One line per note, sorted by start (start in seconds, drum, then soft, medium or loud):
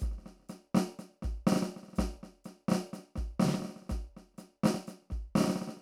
0.01 kick soft
0.01 snare soft
0.01 hi-hat pedal medium
0.12 snare soft
0.19 snare soft
0.24 snare soft
0.27 snare soft
0.37 snare soft
0.40 snare soft
0.43 snare soft
0.50 snare soft
0.50 hi-hat pedal medium
0.76 snare medium
0.78 snare medium
0.89 snare soft
1.00 snare soft
1.00 hi-hat pedal medium
1.12 snare soft
1.14 snare soft
1.23 kick soft
1.23 snare soft
1.31 kick soft
1.48 snare loud
1.48 hi-hat pedal medium
1.53 snare medium
1.57 snare medium
1.63 snare medium
1.70 snare soft
1.77 snare soft
1.84 snare soft
1.89 snare soft
1.94 snare soft
1.94 hi-hat pedal medium
1.99 kick soft
1.99 snare medium
2.04 kick soft
2.13 snare soft
2.16 snare soft
2.24 snare soft
2.45 snare soft
2.45 hi-hat pedal medium
2.69 snare medium
2.72 snare medium
2.76 snare soft
2.94 snare soft
2.94 hi-hat pedal medium
2.99 snare soft
3.06 snare soft
3.16 kick soft
3.16 snare soft
3.41 snare medium
3.41 hi-hat pedal medium
3.43 snare medium
3.45 snare medium
3.49 snare medium
3.55 snare medium
3.60 snare soft
3.63 snare soft
3.66 snare soft
3.70 snare soft
3.77 snare soft
3.83 snare soft
3.87 snare soft
3.90 kick soft
3.90 snare soft
3.90 hi-hat pedal medium
4.17 snare soft
4.35 snare soft
4.35 hi-hat pedal medium
4.39 snare soft
4.64 snare medium
4.66 snare loud
4.70 snare soft
4.75 snare medium
4.88 snare soft
4.88 hi-hat pedal medium
5.03 snare soft
5.08 snare soft
5.11 kick soft
5.11 snare soft
5.36 snare medium
5.36 hi-hat pedal medium
5.39 snare medium
5.41 snare medium
5.45 snare medium
5.48 snare medium
5.51 snare medium
5.56 snare soft
5.62 snare soft
5.68 snare soft
5.78 snare soft